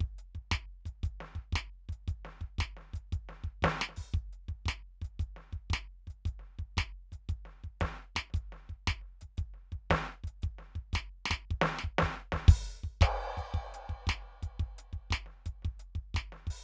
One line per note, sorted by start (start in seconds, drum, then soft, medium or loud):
0.01 kick medium
0.19 closed hi-hat medium
0.35 kick soft
0.52 closed hi-hat loud
0.52 kick medium
0.52 snare loud
0.86 kick soft
0.86 closed hi-hat medium
1.04 closed hi-hat medium
1.04 kick medium
1.21 snare soft
1.36 kick soft
1.53 closed hi-hat loud
1.53 kick medium
1.53 snare loud
1.89 kick soft
1.89 closed hi-hat soft
2.08 closed hi-hat medium
2.08 kick medium
2.25 snare soft
2.41 kick soft
2.59 closed hi-hat medium
2.59 kick medium
2.59 snare loud
2.77 snare soft
2.82 snare soft
2.94 kick soft
2.94 closed hi-hat medium
3.13 closed hi-hat medium
3.13 kick medium
3.29 snare soft
3.44 kick soft
3.63 kick medium
3.63 snare loud
3.82 snare loud
3.89 snare soft
3.95 open hi-hat medium
3.95 kick soft
3.95 snare soft
4.13 kick medium
4.13 hi-hat pedal soft
4.33 closed hi-hat soft
4.49 kick soft
4.66 closed hi-hat loud
4.66 kick medium
4.66 snare loud
5.02 kick soft
5.02 closed hi-hat soft
5.20 closed hi-hat medium
5.20 kick soft
5.37 snare soft
5.53 kick soft
5.71 closed hi-hat loud
5.71 kick medium
5.71 snare loud
6.08 kick soft
6.08 closed hi-hat soft
6.26 closed hi-hat medium
6.26 kick medium
6.40 snare soft
6.59 kick soft
6.78 closed hi-hat medium
6.78 kick medium
6.78 snare loud
7.12 closed hi-hat medium
7.12 kick soft
7.29 closed hi-hat medium
7.29 kick medium
7.46 snare soft
7.64 kick soft
7.81 closed hi-hat medium
7.81 kick medium
7.81 snare medium
8.16 closed hi-hat medium
8.16 kick soft
8.16 snare loud
8.31 kick medium
8.31 snare soft
8.36 closed hi-hat medium
8.36 snare soft
8.53 snare soft
8.70 kick soft
8.88 closed hi-hat medium
8.88 kick medium
8.88 snare loud
9.02 snare soft
9.22 closed hi-hat medium
9.22 kick soft
9.38 closed hi-hat medium
9.38 kick medium
9.54 snare soft
9.72 kick soft
9.91 closed hi-hat medium
9.91 kick medium
9.91 snare loud
10.05 snare soft
10.24 closed hi-hat medium
10.24 kick soft
10.43 closed hi-hat soft
10.43 kick medium
10.59 snare soft
10.76 kick soft
10.93 closed hi-hat medium
10.93 kick medium
10.93 snare loud
11.26 snare loud
11.31 kick soft
11.31 snare loud
11.51 kick medium
11.62 snare loud
11.79 snare medium
11.84 kick soft
11.99 kick medium
11.99 snare loud
12.33 kick soft
12.33 snare medium
12.49 open hi-hat loud
12.49 kick loud
12.84 kick soft
13.02 kick medium
13.02 snare loud
13.02 hi-hat pedal soft
13.02 crash loud
13.38 closed hi-hat soft
13.38 kick soft
13.54 kick medium
13.72 closed hi-hat medium
13.72 snare soft
13.90 kick soft
14.07 closed hi-hat medium
14.07 kick medium
14.07 snare loud
14.23 snare soft
14.43 closed hi-hat medium
14.43 kick soft
14.60 kick medium
14.60 snare soft
14.79 closed hi-hat medium
14.93 kick soft
15.11 closed hi-hat loud
15.11 kick medium
15.11 snare loud
15.27 snare soft
15.46 closed hi-hat medium
15.46 kick soft
15.63 kick medium
15.63 snare soft
15.80 closed hi-hat medium
15.96 kick soft
16.15 closed hi-hat medium
16.15 kick medium
16.15 snare loud
16.33 snare soft
16.47 open hi-hat medium
16.47 kick soft